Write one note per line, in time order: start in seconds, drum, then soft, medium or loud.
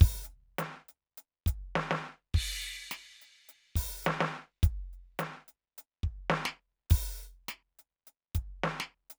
0.01 kick loud
0.01 open hi-hat loud
0.24 hi-hat pedal loud
0.58 snare medium
0.58 closed hi-hat loud
0.88 closed hi-hat medium
1.18 closed hi-hat medium
1.46 kick medium
1.46 closed hi-hat loud
1.75 snare loud
1.91 snare loud
2.34 kick medium
2.34 crash loud
2.62 closed hi-hat soft
2.91 closed hi-hat loud
2.91 snare medium
3.22 closed hi-hat soft
3.49 closed hi-hat medium
3.76 kick medium
3.76 open hi-hat loud
3.83 kick soft
4.04 snare loud
4.04 hi-hat pedal loud
4.21 snare loud
4.63 kick medium
4.63 closed hi-hat loud
4.93 closed hi-hat soft
5.19 snare medium
5.19 closed hi-hat loud
5.48 closed hi-hat medium
5.78 closed hi-hat medium
6.03 kick medium
6.30 snare loud
6.45 snare loud
6.90 kick loud
6.90 open hi-hat loud
7.23 open hi-hat soft
7.48 snare medium
7.48 closed hi-hat loud
7.79 closed hi-hat medium
8.07 closed hi-hat medium
8.35 kick medium
8.35 closed hi-hat loud
8.64 snare loud
8.80 snare loud
9.10 closed hi-hat medium